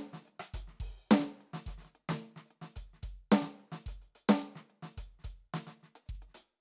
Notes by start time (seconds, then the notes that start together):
0.02 closed hi-hat
0.14 snare
0.25 closed hi-hat, hi-hat pedal
0.40 cross-stick
0.55 closed hi-hat, kick
0.60 kick
0.68 snare
0.75 snare
0.79 open hi-hat, kick, snare
0.87 kick
0.91 kick
1.09 closed hi-hat, snare, hi-hat pedal
1.20 snare
1.41 closed hi-hat
1.54 snare
1.67 closed hi-hat, kick, snare
1.78 closed hi-hat, snare
1.86 snare
1.96 closed hi-hat
2.10 snare
2.24 closed hi-hat
2.37 snare
2.46 hi-hat pedal
2.51 closed hi-hat
2.62 snare
2.77 closed hi-hat, kick
2.94 snare
3.02 closed hi-hat, kick, snare
3.10 kick
3.13 kick
3.33 closed hi-hat, snare
3.43 snare
3.47 open hi-hat
3.60 closed hi-hat
3.73 snare
3.87 closed hi-hat, kick
3.93 kick
4.02 closed hi-hat
4.16 closed hi-hat
4.30 snare
4.39 hi-hat pedal
4.44 closed hi-hat
4.56 snare
4.71 closed hi-hat
4.83 snare
4.98 closed hi-hat, kick
5.20 snare
5.24 closed hi-hat, kick, snare
5.33 kick
5.55 closed hi-hat, snare
5.67 closed hi-hat, snare
5.81 snare, hi-hat pedal
5.96 closed hi-hat
6.06 kick, hi-hat pedal
6.16 kick
6.23 closed hi-hat
6.29 snare
6.35 closed hi-hat